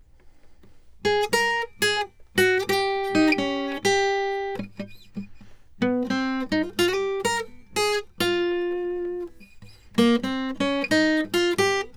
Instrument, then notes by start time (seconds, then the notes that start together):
acoustic guitar
1.06 G#4
1.34 A#4
1.83 G#4
2.39 F#4
2.70 G4
3.16 D#4
3.39 C#4
3.86 G4
5.83 B3
6.11 C4
6.53 D#4
6.80 F4
6.94 G4
7.25 A#4
7.77 G#4
8.21 F4
9.99 A#3
10.24 C4
10.61 C#4
10.92 D#4
11.35 F4
11.59 G4